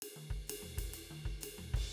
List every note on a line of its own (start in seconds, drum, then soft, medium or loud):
0.02 hi-hat pedal soft
0.02 ride medium
0.16 high tom soft
0.30 kick soft
0.47 hi-hat pedal soft
0.47 ride loud
0.62 floor tom soft
0.77 kick soft
0.77 ride medium
0.93 hi-hat pedal medium
0.93 ride medium
1.10 high tom soft
1.25 kick soft
1.41 hi-hat pedal medium
1.41 ride medium
1.58 floor tom soft
1.73 kick medium
1.73 ride medium